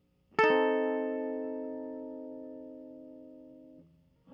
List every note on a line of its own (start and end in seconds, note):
0.39 3.56 A4
0.44 3.84 D#4
0.51 3.86 C4